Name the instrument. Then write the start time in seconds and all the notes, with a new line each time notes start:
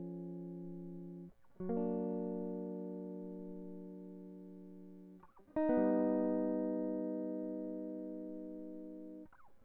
electric guitar
1.61 F#3
1.70 A#3
1.77 D4
5.57 D#4
5.70 B3
5.78 G3